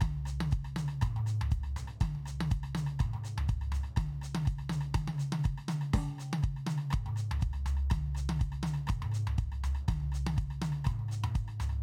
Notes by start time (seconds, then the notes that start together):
0.01 kick, cross-stick, hi-hat pedal, high tom
0.26 cross-stick, hi-hat pedal
0.41 high tom
0.51 kick, cross-stick, hi-hat pedal
0.65 cross-stick
0.76 hi-hat pedal, high tom
0.88 cross-stick
1.02 kick, cross-stick, hi-hat pedal, mid tom
1.16 mid tom
1.27 cross-stick, hi-hat pedal
1.41 floor tom
1.51 kick, cross-stick, hi-hat pedal
1.64 cross-stick
1.77 floor tom, hi-hat pedal
1.88 cross-stick
2.01 kick, cross-stick, hi-hat pedal, high tom
2.15 high tom
2.19 high tom
2.26 cross-stick, hi-hat pedal
2.41 high tom
2.51 kick, cross-stick, hi-hat pedal
2.64 cross-stick
2.75 hi-hat pedal, high tom
2.87 cross-stick
3.00 kick, cross-stick, hi-hat pedal, mid tom
3.14 mid tom
3.24 cross-stick, hi-hat pedal
3.38 floor tom
3.49 kick, cross-stick, hi-hat pedal
3.62 cross-stick
3.72 floor tom, hi-hat pedal
3.84 cross-stick
3.97 kick, cross-stick, hi-hat pedal, high tom
4.09 high tom
4.12 high tom
4.22 cross-stick, hi-hat pedal
4.35 high tom
4.45 kick, cross-stick, hi-hat pedal
4.59 cross-stick
4.70 hi-hat pedal, high tom
4.81 cross-stick
4.94 kick, cross-stick, hi-hat pedal, high tom
5.08 high tom
5.18 cross-stick, hi-hat pedal
5.32 high tom
5.44 kick, cross-stick, hi-hat pedal
5.58 cross-stick
5.69 hi-hat pedal, high tom
5.81 cross-stick
5.94 kick, snare, hi-hat pedal, high tom
6.08 high tom
6.19 cross-stick, hi-hat pedal
6.33 high tom
6.43 kick, cross-stick, hi-hat pedal
6.57 cross-stick
6.67 hi-hat pedal, high tom
6.78 cross-stick
6.91 kick, cross-stick, hi-hat pedal, mid tom
7.06 mid tom
7.16 cross-stick, hi-hat pedal
7.31 floor tom
7.40 kick, cross-stick, hi-hat pedal
7.53 cross-stick
7.66 floor tom, hi-hat pedal
7.77 cross-stick
7.90 kick, cross-stick, hi-hat pedal, high tom
8.15 cross-stick, hi-hat pedal
8.29 high tom
8.40 kick, cross-stick, hi-hat pedal
8.52 cross-stick
8.63 hi-hat pedal, high tom
8.74 cross-stick
8.87 kick, cross-stick, hi-hat pedal, mid tom
9.02 mid tom
9.12 cross-stick, hi-hat pedal
9.27 floor tom
9.38 kick, cross-stick, hi-hat pedal
9.52 cross-stick
9.64 floor tom, hi-hat pedal
9.75 cross-stick
9.88 kick, cross-stick, hi-hat pedal, high tom
10.00 high tom
10.03 high tom
10.06 high tom
10.12 cross-stick, hi-hat pedal
10.27 high tom
10.37 kick, cross-stick, hi-hat pedal
10.51 cross-stick
10.62 hi-hat pedal, high tom
10.72 cross-stick
10.85 kick, cross-stick, hi-hat pedal, mid tom
10.99 mid tom
11.09 cross-stick, hi-hat pedal
11.24 mid tom
11.35 kick, cross-stick, hi-hat pedal
11.48 cross-stick
11.60 floor tom, hi-hat pedal
11.70 cross-stick